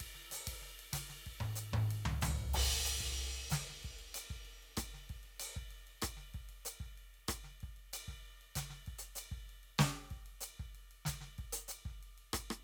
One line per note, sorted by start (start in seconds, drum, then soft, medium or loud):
0.01 kick soft
0.01 ride medium
0.15 snare soft
0.31 snare soft
0.31 hi-hat pedal medium
0.31 ride medium
0.48 kick soft
0.48 ride loud
0.62 snare soft
0.80 ride soft
0.94 kick soft
0.94 snare medium
0.94 hi-hat pedal medium
0.94 ride loud
1.10 snare soft
1.27 kick soft
1.27 ride soft
1.41 high tom medium
1.56 hi-hat pedal medium
1.56 ride soft
1.73 kick soft
1.73 closed hi-hat soft
1.73 high tom loud
1.91 ride medium
2.06 floor tom loud
2.22 kick soft
2.22 floor tom loud
2.22 hi-hat pedal medium
2.54 kick medium
2.54 crash loud
2.54 ride loud
2.86 hi-hat pedal medium
2.86 ride bell medium
3.01 kick soft
3.06 snare soft
3.19 ride soft
3.36 ride soft
3.51 kick soft
3.51 snare medium
3.51 hi-hat pedal medium
3.51 ride bell medium
3.70 snare soft
3.84 kick soft
3.84 ride soft
3.99 ride soft
4.15 hi-hat pedal medium
4.15 ride bell medium
4.31 kick soft
4.31 snare soft
4.46 ride soft
4.63 ride soft
4.78 kick medium
4.78 cross-stick medium
4.78 hi-hat pedal medium
4.78 ride bell medium
4.94 snare soft
5.10 kick soft
5.10 ride soft
5.24 ride soft
5.40 hi-hat pedal medium
5.40 ride bell medium
5.56 kick medium
5.56 snare soft
5.71 ride soft
5.88 ride soft
6.02 kick soft
6.02 cross-stick medium
6.02 hi-hat pedal medium
6.02 ride bell medium
6.17 snare soft
6.34 kick soft
6.34 ride soft
6.50 ride soft
6.66 hi-hat pedal loud
6.66 ride bell medium
6.81 kick soft
6.81 snare soft
6.98 ride soft
7.15 ride soft
7.29 kick soft
7.29 cross-stick medium
7.29 hi-hat pedal medium
7.29 ride bell medium
7.45 snare soft
7.61 kick soft
7.61 ride soft
7.77 ride soft
7.94 hi-hat pedal medium
7.94 ride bell medium
8.09 kick soft
8.09 snare soft
8.26 ride soft
8.42 ride soft
8.56 kick soft
8.56 snare medium
8.56 hi-hat pedal medium
8.56 ride bell medium
8.70 snare soft
8.87 kick soft
8.87 ride soft
8.99 closed hi-hat medium
9.03 ride soft
9.16 hi-hat pedal medium
9.16 ride bell medium
9.32 kick medium
9.50 ride soft
9.64 ride soft
9.79 kick soft
9.79 snare medium
9.79 hi-hat pedal medium
9.79 ride bell medium
9.95 snare soft
10.11 kick soft
10.11 ride soft
10.27 ride soft
10.41 hi-hat pedal medium
10.41 ride bell medium
10.60 kick soft
10.60 snare soft
10.76 ride soft
10.92 ride soft
11.06 kick soft
11.06 snare medium
11.06 hi-hat pedal medium
11.06 ride bell medium
11.21 snare soft
11.39 kick soft
11.39 ride soft
11.53 closed hi-hat loud
11.53 ride soft
11.69 hi-hat pedal medium
11.69 ride bell medium
11.86 kick medium
11.86 snare soft
12.04 ride soft
12.19 ride soft
12.34 kick soft
12.34 cross-stick medium
12.34 hi-hat pedal medium
12.34 ride bell medium
12.51 cross-stick medium